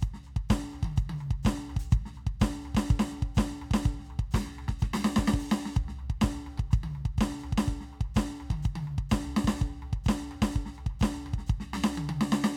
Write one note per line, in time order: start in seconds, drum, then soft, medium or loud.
0.01 kick medium
0.01 floor tom medium
0.01 hi-hat pedal medium
0.14 snare soft
0.23 floor tom soft
0.23 hi-hat pedal soft
0.36 kick medium
0.36 floor tom medium
0.49 kick medium
0.49 snare loud
0.49 hi-hat pedal medium
0.62 floor tom soft
0.70 floor tom medium
0.70 hi-hat pedal soft
0.83 kick medium
0.83 high tom loud
0.96 kick loud
0.96 floor tom medium
0.96 hi-hat pedal medium
1.09 high tom loud
1.18 floor tom medium
1.18 hi-hat pedal soft
1.31 kick medium
1.31 floor tom medium
1.43 kick medium
1.43 snare loud
1.43 hi-hat pedal medium
1.57 floor tom medium
1.65 hi-hat pedal soft
1.69 floor tom medium
1.77 open hi-hat loud
1.77 kick medium
1.91 kick loud
1.91 floor tom medium
1.91 hi-hat pedal medium
2.06 snare medium
2.14 floor tom medium
2.14 hi-hat pedal soft
2.27 kick medium
2.27 floor tom medium
2.40 kick medium
2.40 snare loud
2.40 hi-hat pedal medium
2.54 floor tom medium
2.62 floor tom medium
2.62 hi-hat pedal soft
2.75 kick medium
2.75 snare loud
2.88 kick loud
2.88 floor tom medium
2.88 hi-hat pedal medium
3.00 snare loud
3.09 floor tom medium
3.09 hi-hat pedal soft
3.22 kick medium
3.22 floor tom medium
3.35 kick loud
3.35 snare loud
3.35 hi-hat pedal medium
3.50 floor tom medium
3.56 hi-hat pedal soft
3.62 floor tom medium
3.71 kick medium
3.71 snare loud
3.82 kick loud
3.82 hi-hat pedal medium
3.88 floor tom medium
4.00 snare soft
4.04 hi-hat pedal soft
4.10 floor tom medium
4.19 kick medium
4.19 floor tom medium
4.31 kick medium
4.31 snare loud
4.31 hi-hat pedal medium
4.46 floor tom medium
4.53 hi-hat pedal soft
4.58 floor tom medium
4.68 kick medium
4.68 snare medium
4.79 kick medium
4.79 snare medium
4.79 hi-hat pedal medium
4.94 snare loud
5.01 snare loud
5.01 hi-hat pedal soft
5.16 kick medium
5.16 snare loud
5.25 snare loud
5.25 hi-hat pedal medium
5.34 kick medium
5.39 open hi-hat loud
5.51 snare loud
5.66 snare medium
5.74 kick loud
5.74 floor tom loud
5.74 hi-hat pedal medium
5.88 snare medium
5.94 hi-hat pedal soft
5.99 floor tom medium
6.10 kick medium
6.10 floor tom medium
6.21 kick medium
6.21 snare loud
6.21 hi-hat pedal medium
6.34 floor tom medium
6.44 floor tom medium
6.44 hi-hat pedal soft
6.58 kick medium
6.58 high tom medium
6.71 kick loud
6.71 floor tom medium
6.71 hi-hat pedal medium
6.83 high tom loud
6.93 floor tom medium
6.93 hi-hat pedal soft
7.05 kick medium
7.05 floor tom medium
7.18 kick medium
7.18 snare loud
7.18 hi-hat pedal medium
7.32 floor tom medium
7.39 hi-hat pedal medium
7.44 floor tom medium
7.53 kick medium
7.58 snare loud
7.64 kick medium
7.64 hi-hat pedal medium
7.70 floor tom medium
7.81 snare soft
7.86 hi-hat pedal soft
7.93 floor tom medium
8.01 kick medium
8.01 floor tom medium
8.14 kick medium
8.14 snare loud
8.14 hi-hat pedal medium
8.29 floor tom soft
8.36 hi-hat pedal soft
8.40 floor tom medium
8.50 kick medium
8.50 high tom loud
8.63 kick medium
8.63 floor tom medium
8.63 hi-hat pedal medium
8.76 high tom loud
8.84 floor tom medium
8.84 hi-hat pedal soft
8.98 kick medium
8.98 floor tom medium
9.09 kick medium
9.09 snare loud
9.09 hi-hat pedal medium
9.24 floor tom medium
9.31 hi-hat pedal soft
9.37 snare loud
9.44 kick medium
9.44 snare loud
9.57 hi-hat pedal medium
9.61 kick medium
9.70 floor tom medium
9.79 floor tom medium
9.79 hi-hat pedal soft
9.93 kick medium
9.93 floor tom soft
10.04 kick medium
10.04 hi-hat pedal medium
10.09 snare loud
10.20 floor tom soft
10.31 floor tom medium
10.42 kick medium
10.42 snare loud
10.51 floor tom medium
10.51 hi-hat pedal medium
10.56 kick medium
10.66 snare medium
10.73 hi-hat pedal soft
10.78 floor tom medium
10.86 kick medium
10.86 floor tom medium
11.00 kick medium
11.00 snare loud
11.00 hi-hat pedal medium
11.15 floor tom medium
11.26 floor tom medium
11.34 kick medium
11.38 snare medium
11.47 kick medium
11.47 floor tom medium
11.47 hi-hat pedal medium
11.60 snare medium
11.69 hi-hat pedal soft
11.73 snare loud
11.84 snare loud
11.94 hi-hat pedal medium
11.94 high tom loud
12.09 high tom loud
12.21 snare loud
12.32 snare loud
12.44 snare loud